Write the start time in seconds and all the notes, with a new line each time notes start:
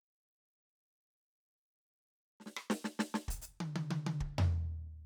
2.40 snare
2.46 snare
2.57 cross-stick
2.70 snare
2.84 snare
2.99 snare
3.14 snare
3.28 open hi-hat, kick
3.42 hi-hat pedal
3.60 high tom
3.76 high tom
3.91 high tom
4.06 high tom
4.20 kick
4.38 floor tom